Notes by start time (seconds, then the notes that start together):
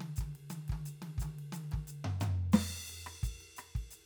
0.01 high tom, ride
0.16 kick, hi-hat pedal, ride
0.21 high tom
0.36 ride
0.50 hi-hat pedal, high tom, ride
0.69 kick, high tom, ride
0.86 hi-hat pedal, ride
1.02 high tom, ride
1.18 kick, hi-hat pedal, ride
1.22 high tom
1.39 ride
1.53 hi-hat pedal, high tom, ride
1.72 kick, high tom, ride
1.88 hi-hat pedal, ride
2.05 floor tom
2.21 floor tom, hi-hat pedal
2.53 snare, hi-hat pedal, crash
2.86 hi-hat pedal, ride
3.07 cross-stick, ride
3.23 kick, hi-hat pedal, ride
3.41 ride
3.57 cross-stick, hi-hat pedal, ride
3.76 kick, ride
3.91 hi-hat pedal, ride